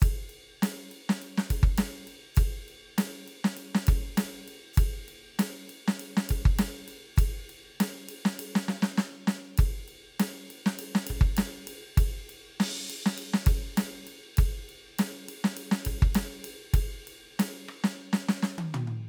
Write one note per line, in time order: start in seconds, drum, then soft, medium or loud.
0.00 kick loud
0.00 hi-hat pedal medium
0.00 ride loud
0.29 ride medium
0.62 snare loud
0.62 ride loud
0.92 ride medium
1.09 snare loud
1.22 ride medium
1.38 snare loud
1.50 kick medium
1.50 ride loud
1.63 kick loud
1.78 snare loud
1.78 ride loud
2.07 ride medium
2.35 kick loud
2.35 hi-hat pedal medium
2.35 ride loud
2.68 ride soft
2.98 snare loud
2.98 ride loud
3.28 ride medium
3.44 snare loud
3.57 ride medium
3.75 snare loud
3.87 kick loud
3.87 ride loud
4.17 snare loud
4.17 ride loud
4.48 ride medium
4.74 hi-hat pedal medium
4.78 kick loud
4.78 ride loud
5.08 ride medium
5.39 snare loud
5.39 ride loud
5.70 ride medium
5.88 snare loud
6.00 ride loud
6.17 snare loud
6.29 kick medium
6.29 ride loud
6.45 kick loud
6.59 snare loud
6.59 ride loud
6.88 ride medium
7.16 kick loud
7.16 hi-hat pedal medium
7.16 ride loud
7.50 ride medium
7.80 snare loud
7.80 ride loud
8.09 ride loud
8.25 snare loud
8.39 ride loud
8.55 snare loud
8.68 snare loud
8.82 snare loud
8.98 snare loud
9.27 snare loud
9.58 kick loud
9.58 ride loud
9.88 ride medium
10.20 snare loud
10.20 ride loud
10.50 ride medium
10.66 snare loud
10.79 ride loud
10.95 snare loud
11.07 kick medium
11.07 ride loud
11.21 kick loud
11.37 snare loud
11.37 ride loud
11.67 ride loud
11.97 kick loud
11.97 ride loud
12.29 ride medium
12.60 snare loud
12.60 ride loud
12.90 ride loud
13.06 snare loud
13.18 ride loud
13.34 snare loud
13.46 kick loud
13.46 ride loud
13.77 snare loud
13.77 ride loud
14.07 ride medium
14.37 kick loud
14.37 ride loud
14.69 ride medium
14.99 snare loud
14.99 ride loud
15.29 ride loud
15.44 snare loud
15.57 ride loud
15.71 snare loud
15.85 kick medium
15.85 ride loud
16.02 kick loud
16.15 snare loud
16.15 ride loud
16.44 ride loud
16.74 kick loud
16.74 ride loud
17.07 ride medium
17.39 snare loud
17.39 ride loud
17.69 cross-stick medium
17.84 snare loud
18.13 snare loud
18.29 snare loud
18.43 snare loud
18.58 high tom loud
18.74 mid tom loud
18.87 mid tom medium